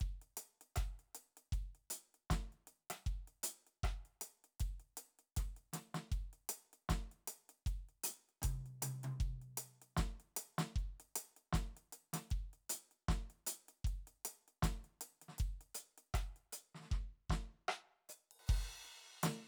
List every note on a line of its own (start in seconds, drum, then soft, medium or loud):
0.01 kick medium
0.01 closed hi-hat soft
0.22 closed hi-hat soft
0.38 closed hi-hat medium
0.62 closed hi-hat soft
0.76 kick medium
0.76 cross-stick medium
0.76 closed hi-hat medium
1.00 closed hi-hat soft
1.15 closed hi-hat medium
1.38 closed hi-hat soft
1.53 kick medium
1.53 closed hi-hat soft
1.75 closed hi-hat soft
1.91 closed hi-hat loud
2.15 closed hi-hat soft
2.31 kick medium
2.31 snare medium
2.31 closed hi-hat medium
2.53 closed hi-hat soft
2.68 closed hi-hat soft
2.91 cross-stick medium
2.91 closed hi-hat medium
3.07 kick medium
3.07 closed hi-hat soft
3.28 closed hi-hat soft
3.44 closed hi-hat loud
3.67 closed hi-hat soft
3.84 kick medium
3.84 cross-stick medium
3.84 closed hi-hat soft
4.06 closed hi-hat soft
4.22 closed hi-hat medium
4.45 closed hi-hat soft
4.60 kick medium
4.60 closed hi-hat medium
4.80 closed hi-hat soft
4.98 closed hi-hat medium
5.20 closed hi-hat soft
5.37 kick medium
5.37 snare soft
5.37 closed hi-hat medium
5.57 closed hi-hat soft
5.74 snare soft
5.74 closed hi-hat medium
5.95 snare medium
5.95 closed hi-hat soft
6.12 kick medium
6.12 closed hi-hat soft
6.34 closed hi-hat soft
6.50 closed hi-hat loud
6.74 closed hi-hat soft
6.90 kick medium
6.90 snare medium
6.90 closed hi-hat medium
7.12 closed hi-hat soft
7.28 closed hi-hat loud
7.50 closed hi-hat soft
7.67 kick medium
7.67 closed hi-hat soft
7.89 closed hi-hat soft
8.04 closed hi-hat loud
8.29 closed hi-hat soft
8.42 kick medium
8.42 closed hi-hat loud
8.42 high tom medium
8.67 closed hi-hat soft
8.83 closed hi-hat loud
8.83 high tom medium
9.04 closed hi-hat soft
9.04 high tom medium
9.21 kick medium
9.21 closed hi-hat soft
9.42 closed hi-hat soft
9.58 closed hi-hat loud
9.82 closed hi-hat soft
9.97 kick medium
9.97 snare medium
9.97 closed hi-hat medium
10.21 closed hi-hat soft
10.37 closed hi-hat loud
10.59 snare medium
10.59 closed hi-hat medium
10.76 kick medium
10.76 closed hi-hat soft
11.00 closed hi-hat soft
11.16 closed hi-hat loud
11.37 closed hi-hat soft
11.53 kick medium
11.53 snare medium
11.53 closed hi-hat medium
11.77 closed hi-hat soft
11.93 closed hi-hat medium
12.14 snare medium
12.14 closed hi-hat medium
12.31 kick medium
12.31 closed hi-hat soft
12.54 closed hi-hat soft
12.70 closed hi-hat loud
12.92 closed hi-hat soft
13.09 kick medium
13.09 snare medium
13.09 closed hi-hat soft
13.31 closed hi-hat soft
13.47 closed hi-hat loud
13.69 closed hi-hat soft
13.85 kick medium
13.85 closed hi-hat soft
14.08 closed hi-hat soft
14.26 closed hi-hat loud
14.49 closed hi-hat soft
14.63 kick medium
14.63 snare medium
14.63 closed hi-hat medium
14.85 closed hi-hat soft
15.02 closed hi-hat medium
15.22 snare soft
15.22 closed hi-hat soft
15.29 snare soft
15.32 snare soft
15.39 kick medium
15.39 closed hi-hat medium
15.62 closed hi-hat soft
15.75 closed hi-hat medium
15.98 closed hi-hat soft
16.15 kick medium
16.15 cross-stick medium
16.15 closed hi-hat medium
16.37 closed hi-hat soft
16.53 closed hi-hat medium
16.75 snare soft
16.80 snare soft
16.83 snare soft
16.88 snare soft
16.91 kick medium
16.91 snare soft
17.30 kick medium
17.30 snare medium
17.30 ride soft
17.69 cross-stick medium
18.10 hi-hat pedal medium
18.32 crash soft
18.40 crash soft
18.48 kick medium
18.48 crash medium
18.85 closed hi-hat soft
19.24 snare medium
19.24 closed hi-hat loud